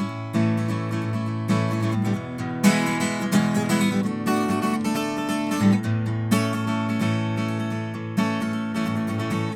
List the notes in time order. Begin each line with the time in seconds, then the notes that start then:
0.00 A2 A3 C#4 E4
0.12 A2
0.35 A2 E3 A3 C#4
0.59 A3
0.70 E3 A3 C#4 E4
0.93 E3 A3 C#4 E4
1.04 E3 A3
1.15 E3 A3 C#4 E4
1.28 E3 A3
1.50 A2 E3 A3 C#4 E4
1.71 A2 E3 A3
1.75 C#4
1.82 E3 A3 C#4 E4
1.86 A2
1.94 E2 A2
2.04 D3 G3 B3 E4
2.08 A2
2.15 E2 B2 E3 G#3
2.40 E2 B2 E3
2.66 B2 E3 G#3 B3 E4
2.86 G#3 B3 E4
3.02 E3 G#3 B3 E4
3.25 E3
3.34 E2 B2 E3 G#3 G#4
3.57 G#3 B3 G#4
3.71 E3 G#3 B3 E4
3.82 G3 B3 E4
3.92 D3 G3 B3 E4
4.04 D3 A3 F#4
4.08 D4
4.28 A3 D4 F#4
4.50 A3 D4 F#4
4.64 D3 A3 D4 F#4
4.74 D4
4.86 A3 D4 A4
4.97 A3 D4 A4
5.18 D4 A4
5.30 D3 A3 D4 A4
5.53 A3 D4 A4
5.62 A2 D3 G3 B3 A4
5.75 C#4 A4
5.85 E2 A2 E3
6.08 A2 E3 A3
6.33 A3 C#4 A4
6.55 A3 C#4 A4
6.70 E3 A3 C#4 A4
6.91 E3 A3 C#4 A4
7.02 A2 E3 A3 C#4 A4
7.39 A3 C#4 A4
7.60 A3 A4
7.72 E3 A3 C#4
7.96 E3 A3
8.19 E3 A3 C#4 A4
8.43 E3 A3 C#4 A4
8.54 A3 C#4 A4
8.77 A2 E3 A3 C#4 A4
8.87 A2 E3 A3 C#4
8.97 E3 A3 C#4 A4
9.10 A2 E3 A3 C#4
9.20 A2 E3 A3 C#4 A4
9.32 A2 E3 A3 C#4 A4